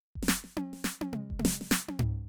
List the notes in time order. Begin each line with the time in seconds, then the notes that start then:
0.15 kick
0.23 snare
0.28 snare
0.44 snare
0.57 high tom
0.73 snare
0.84 snare
1.01 high tom
1.13 mid tom
1.30 kick
1.39 mid tom
1.45 snare
1.61 snare
1.71 snare
1.88 high tom
1.99 floor tom